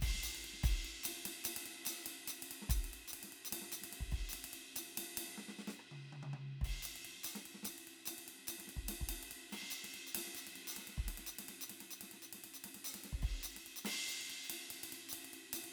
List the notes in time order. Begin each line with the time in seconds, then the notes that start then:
0.01 kick, hi-hat pedal, ride
0.14 snare
0.23 hi-hat pedal, ride
0.35 ride
0.44 hi-hat pedal, ride
0.53 snare
0.64 kick, hi-hat pedal, ride
0.82 hi-hat pedal, ride
1.04 hi-hat pedal, ride
1.25 snare, ride
1.44 hi-hat pedal, ride
1.56 snare, ride
1.66 ride
1.85 hi-hat pedal, ride
2.02 snare, ride
2.28 hi-hat pedal, ride
2.42 ride
2.51 ride
2.62 snare
2.69 kick, hi-hat pedal, ride
2.84 ride
2.93 ride
3.08 hi-hat pedal
3.13 ride
3.23 snare, ride
3.32 ride
3.45 hi-hat pedal
3.52 snare, ride
3.62 snare
3.72 hi-hat pedal, ride
3.82 snare, ride
3.92 snare, ride
4.00 kick
4.12 kick, ride
4.22 snare
4.29 hi-hat pedal
4.33 ride
4.44 ride
4.53 ride
4.76 hi-hat pedal, ride
4.97 snare, ride
5.17 ride
5.28 snare
5.38 snare
5.48 snare
5.59 snare
5.67 snare
5.79 cross-stick
5.91 high tom
6.13 high tom
6.23 high tom
6.33 high tom
6.61 kick, ride
6.82 hi-hat pedal, ride
6.96 ride
7.05 ride
7.17 snare
7.24 hi-hat pedal, ride
7.35 snare, ride
7.46 ride
7.54 snare
7.63 snare, hi-hat pedal, ride
7.78 ride
7.84 hi-hat pedal, ride
8.06 hi-hat pedal, ride
8.18 ride
8.28 ride
8.38 snare
8.47 hi-hat pedal, ride
8.58 snare, ride
8.67 snare, ride
8.76 kick
8.89 snare, ride
9.01 kick
9.09 ride
9.23 ride
9.31 ride
9.49 snare, hi-hat pedal, ride
9.62 snare
9.70 hi-hat pedal, ride
9.84 snare, ride
9.94 snare, ride
10.07 hi-hat pedal
10.15 snare, ride
10.27 snare
10.35 hi-hat pedal, ride
10.47 snare, ride
10.56 snare, ride
10.67 hi-hat pedal
10.77 snare, ride
10.87 snare, ride
10.98 kick
11.07 snare, ride
11.18 snare, ride
11.27 hi-hat pedal
11.39 snare, ride
11.48 snare, ride
11.61 hi-hat pedal
11.70 snare, ride
11.81 snare, ride
11.91 hi-hat pedal
12.01 snare, ride
12.11 snare, ride
12.22 hi-hat pedal
12.33 snare, ride
12.44 snare, ride
12.54 hi-hat pedal
12.64 snare, ride
12.75 snare, ride
12.85 hi-hat pedal
12.94 snare, ride
13.04 snare, ride
13.13 kick
13.22 kick, ride
13.36 snare
13.43 hi-hat pedal, ride
13.56 snare, ride
13.66 ride
13.76 hi-hat pedal
13.85 snare, ride
14.08 hi-hat pedal, ride
14.21 ride
14.30 ride
14.44 hi-hat pedal
14.50 ride
14.70 ride
14.84 ride
14.92 ride
15.09 hi-hat pedal
15.13 ride
15.25 ride
15.33 ride
15.46 snare
15.53 hi-hat pedal, ride
15.64 ride